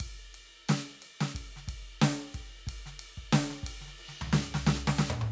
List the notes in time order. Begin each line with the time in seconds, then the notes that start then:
0.02 kick, ride
0.34 ride
0.69 snare, hi-hat pedal, ride
1.02 hi-hat pedal, ride
1.20 snare
1.34 kick, ride
1.56 snare
1.68 kick, hi-hat pedal, ride
2.01 snare, ride
2.34 kick, ride
2.67 kick, ride
2.86 snare
2.99 ride
3.17 kick
3.32 snare, ride
3.50 snare
3.63 kick, ride
3.81 snare
3.87 snare
3.98 ride
4.08 snare
4.14 snare
4.21 floor tom
4.33 snare
4.54 snare
4.66 snare
4.75 cross-stick
4.87 snare
4.98 snare
5.10 high tom
5.21 high tom